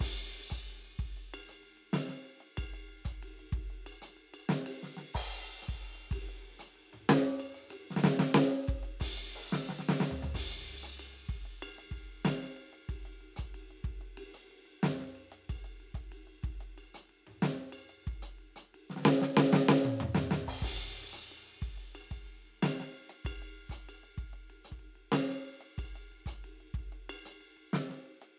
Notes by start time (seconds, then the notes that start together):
0.00 kick, ride
0.34 ride
0.50 closed hi-hat, kick
0.70 ride
0.85 closed hi-hat
0.99 kick, ride
1.17 closed hi-hat
1.34 ride bell
1.49 closed hi-hat
1.63 ride
1.77 ride
1.93 snare, ride bell
2.08 snare
2.24 ride
2.40 closed hi-hat
2.57 kick, ride bell
2.74 closed hi-hat
2.89 ride
3.05 closed hi-hat, kick
3.23 ride
3.39 closed hi-hat
3.52 kick, ride
3.70 closed hi-hat
3.86 ride bell
4.02 closed hi-hat
4.17 ride
4.34 ride bell
4.49 snare
4.66 ride
4.83 snare
4.97 snare
5.14 kick, crash
5.30 closed hi-hat
5.46 ride
5.62 closed hi-hat
5.68 kick
5.80 ride
5.95 closed hi-hat
6.11 kick, ride
6.28 closed hi-hat
6.44 ride
6.59 closed hi-hat
6.76 ride
6.93 cross-stick, high tom, ride, floor tom
7.09 snare
7.40 ride bell
7.54 open hi-hat
7.70 hi-hat pedal, ride
7.90 snare
7.96 snare
8.04 snare
8.19 snare
8.34 snare
8.51 closed hi-hat
8.68 kick, ride
8.83 closed hi-hat
9.00 kick, ride
9.17 closed hi-hat
9.35 crash
9.52 snare
9.62 hi-hat pedal
9.69 snare
9.79 snare
9.89 snare
10.00 snare
10.11 floor tom
10.22 floor tom
10.34 kick, ride
10.51 closed hi-hat
10.67 ride
10.83 closed hi-hat
10.99 ride bell
11.14 closed hi-hat
11.29 kick, ride
11.45 closed hi-hat
11.62 ride bell
11.78 closed hi-hat
11.91 kick, ride
12.08 ride bell
12.25 snare, ride bell
12.42 snare
12.56 ride
12.73 closed hi-hat
12.89 kick, cross-stick, ride
13.05 closed hi-hat
13.21 ride
13.36 closed hi-hat, kick
13.54 ride
13.70 closed hi-hat
13.83 kick, ride
14.01 closed hi-hat
14.17 ride
14.34 closed hi-hat
14.51 ride
14.66 ride
14.83 snare, ride, floor tom
14.99 snare
15.15 ride
15.32 closed hi-hat
15.49 kick, ride bell
15.64 closed hi-hat
15.80 ride
15.94 kick, closed hi-hat
16.12 ride
16.27 closed hi-hat
16.43 kick, ride
16.60 closed hi-hat
16.78 cross-stick, ride bell
16.94 closed hi-hat
17.09 ride
17.27 cross-stick, high tom, ride, floor tom
17.31 hi-hat pedal
17.42 snare
17.59 snare
17.72 ride bell
17.89 closed hi-hat
18.04 kick, ride
18.22 closed hi-hat
18.38 ride
18.56 closed hi-hat
18.74 ride
18.90 snare
18.96 snare
19.01 snare
19.05 snare
19.22 snare
19.34 snare, hi-hat pedal
19.53 snare
19.69 snare
19.85 high tom
20.00 mid tom
20.15 snare
20.31 snare
20.47 kick, crash
20.62 kick, ride
20.82 closed hi-hat
20.95 ride
21.13 closed hi-hat
21.31 ride bell
21.47 closed hi-hat
21.61 kick, ride
21.77 closed hi-hat
21.95 ride bell
22.11 kick, closed hi-hat
22.26 ride
22.62 snare, ride bell
22.80 snare
22.92 ride
23.09 closed hi-hat
23.25 kick, ride bell
23.42 closed hi-hat
23.56 ride
23.69 closed hi-hat, kick
23.89 ride bell
24.03 closed hi-hat
24.17 kick, ride
24.33 closed hi-hat
24.50 cross-stick, ride
24.65 closed hi-hat
24.72 kick
24.79 ride
24.95 ride
25.12 snare, ride bell
25.29 snare
25.45 ride
25.61 closed hi-hat
25.78 kick, ride bell
25.95 closed hi-hat
26.12 ride
26.26 closed hi-hat, kick
26.44 ride
26.60 closed hi-hat
26.74 kick, ride
26.92 closed hi-hat
27.09 ride bell
27.25 closed hi-hat
27.41 ride
27.57 ride
27.73 snare, ride
27.90 snare
28.06 ride
28.22 closed hi-hat